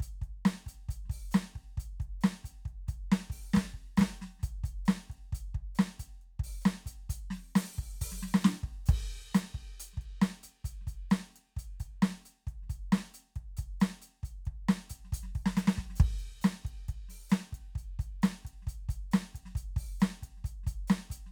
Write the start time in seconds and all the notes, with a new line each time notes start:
0.01 closed hi-hat, kick
0.23 kick, closed hi-hat
0.46 snare
0.67 closed hi-hat, kick
0.90 closed hi-hat, kick, snare
1.06 snare
1.11 open hi-hat, kick
1.32 snare, hi-hat pedal
1.56 kick, closed hi-hat
1.79 closed hi-hat, kick, snare
2.01 kick, closed hi-hat
2.22 snare, hi-hat pedal
2.45 closed hi-hat, kick
2.66 kick, closed hi-hat
2.88 closed hi-hat, kick, snare
3.13 snare
3.31 open hi-hat, kick
3.55 kick, snare, hi-hat pedal
3.58 snare
3.75 kick
3.98 kick, snare, hi-hat pedal
4.02 snare
4.23 snare
4.41 closed hi-hat, kick, snare
4.65 closed hi-hat, kick
4.87 snare, hi-hat pedal
5.11 kick, closed hi-hat
5.34 closed hi-hat, kick
5.56 kick, closed hi-hat
5.76 snare, hi-hat pedal
6.01 closed hi-hat, kick
6.23 closed hi-hat
6.41 kick
6.45 open hi-hat
6.62 hi-hat pedal
6.67 snare
6.87 closed hi-hat, kick
7.11 closed hi-hat, kick
7.32 open hi-hat, snare
7.57 open hi-hat, snare
7.76 open hi-hat, kick, snare
7.95 snare
8.02 open hi-hat, kick
8.13 snare
8.24 snare
8.35 snare
8.42 snare, hi-hat pedal
8.64 kick
8.87 kick, hi-hat pedal
8.91 crash
9.10 closed hi-hat
9.36 closed hi-hat, snare
9.55 kick
9.81 closed hi-hat
9.94 kick, snare
10.02 closed hi-hat
10.23 snare
10.44 closed hi-hat, kick
10.66 closed hi-hat, kick
10.82 snare
10.88 closed hi-hat, kick
11.12 snare, hi-hat pedal
11.37 closed hi-hat
11.58 closed hi-hat, kick
11.81 closed hi-hat, kick
12.03 snare
12.09 snare
12.26 closed hi-hat
12.48 kick, closed hi-hat
12.64 snare
12.71 closed hi-hat, kick
12.93 snare, hi-hat pedal
12.99 snare
13.15 closed hi-hat
13.37 kick, closed hi-hat
13.58 closed hi-hat, kick
13.81 snare, hi-hat pedal
14.03 closed hi-hat
14.24 closed hi-hat, kick
14.47 kick, closed hi-hat
14.70 snare, hi-hat pedal
14.91 closed hi-hat, kick
15.06 snare
15.14 closed hi-hat, kick
15.24 snare
15.36 kick, open hi-hat
15.47 snare
15.58 snare, hi-hat pedal
15.69 snare
15.79 kick, snare
15.91 snare
15.97 hi-hat pedal
16.01 kick, crash
16.20 closed hi-hat
16.43 snare, hi-hat pedal
16.66 kick, closed hi-hat
16.90 kick, closed hi-hat
17.10 open hi-hat, snare
17.31 snare, hi-hat pedal
17.54 kick, closed hi-hat
17.75 kick, snare
17.79 closed hi-hat
18.00 closed hi-hat, kick
18.23 snare, hi-hat pedal
18.30 snare
18.46 kick, closed hi-hat
18.63 snare
18.68 closed hi-hat, kick
18.90 closed hi-hat, kick
19.13 snare, hi-hat pedal
19.36 kick, closed hi-hat
19.47 snare
19.56 closed hi-hat, kick
19.77 open hi-hat, kick
20.01 snare, hi-hat pedal
20.24 kick, closed hi-hat
20.38 snare
20.45 closed hi-hat, kick
20.64 closed hi-hat, kick, snare
20.89 snare, hi-hat pedal
21.11 closed hi-hat, kick
21.27 snare